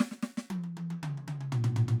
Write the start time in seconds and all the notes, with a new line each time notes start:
0.00 snare
0.11 snare
0.23 snare
0.37 snare
0.50 high tom
0.63 high tom
0.77 high tom
0.90 high tom
1.03 mid tom
1.17 mid tom
1.28 mid tom
1.41 mid tom
1.52 floor tom
1.64 floor tom
1.76 floor tom
1.88 floor tom